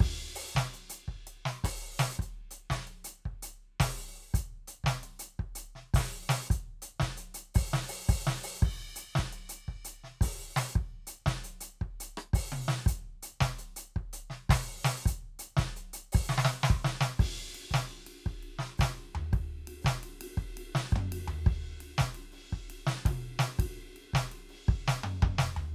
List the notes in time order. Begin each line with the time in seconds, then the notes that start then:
0.01 kick, ride
0.36 open hi-hat
0.53 kick, snare, hi-hat pedal
0.74 closed hi-hat
0.90 closed hi-hat
1.08 kick
1.27 closed hi-hat
1.46 snare
1.64 open hi-hat, kick, cross-stick
1.99 open hi-hat, snare
2.16 kick, hi-hat pedal
2.22 closed hi-hat
2.51 closed hi-hat
2.70 kick, snare
2.87 closed hi-hat
3.05 closed hi-hat
3.26 kick
3.43 closed hi-hat
3.80 open hi-hat, kick, snare
4.32 closed hi-hat, kick, hi-hat pedal
4.68 closed hi-hat
4.84 kick, snare
5.04 closed hi-hat
5.20 closed hi-hat
5.40 kick
5.56 closed hi-hat
5.76 snare
5.94 open hi-hat, kick, snare
6.30 open hi-hat, snare
6.48 closed hi-hat, kick, hi-hat pedal
6.82 closed hi-hat
7.00 kick, snare
7.17 closed hi-hat
7.35 closed hi-hat
7.55 open hi-hat, kick
7.74 snare
7.89 open hi-hat
8.09 open hi-hat, kick
8.27 snare
8.44 open hi-hat
8.60 kick, hi-hat pedal, crash
8.96 closed hi-hat
9.16 kick, snare
9.33 closed hi-hat
9.50 closed hi-hat
9.68 kick
9.85 closed hi-hat
10.04 snare
10.21 open hi-hat, kick, cross-stick
10.57 open hi-hat, snare
10.73 kick, hi-hat pedal
11.07 closed hi-hat
11.26 kick, snare
11.44 closed hi-hat
11.61 closed hi-hat
11.82 kick
12.01 closed hi-hat
12.18 cross-stick
12.34 open hi-hat, kick
12.52 high tom
12.69 snare
12.85 closed hi-hat, kick, hi-hat pedal
13.23 closed hi-hat
13.41 kick, snare
13.59 closed hi-hat
13.77 closed hi-hat
13.96 kick
14.13 closed hi-hat
14.30 snare
14.50 open hi-hat, kick, snare
14.85 open hi-hat, snare
15.03 kick, hi-hat pedal
15.08 closed hi-hat
15.39 closed hi-hat
15.57 kick, snare
15.77 closed hi-hat
15.94 closed hi-hat
16.12 open hi-hat, kick
16.30 snare
16.38 snare
16.45 snare
16.64 snare
16.70 kick
16.85 snare
17.01 snare
17.20 kick, ride
17.55 ride
17.71 kick, snare, hi-hat pedal
17.90 ride
18.07 ride
18.26 kick
18.43 ride
18.59 snare, ride
18.78 kick, snare, hi-hat pedal, ride
19.15 floor tom
19.33 kick, ride
19.68 ride
19.82 kick, hi-hat pedal
19.86 snare
20.04 ride
20.21 ride
20.38 kick
20.57 ride
20.75 snare
20.90 kick, hi-hat pedal
20.96 mid tom
21.12 ride
21.28 floor tom
21.47 kick, ride
21.81 ride
21.98 kick, snare, hi-hat pedal
22.15 ride
22.33 ride
22.51 kick, ride
22.70 ride
22.87 snare
23.06 kick, high tom, ride
23.39 snare, ride
23.57 kick, hi-hat pedal, ride
23.97 ride
24.14 kick, snare
24.32 ride
24.50 ride
24.67 kick, ride
24.88 snare
25.04 mid tom
25.23 kick, mid tom
25.39 snare
25.57 floor tom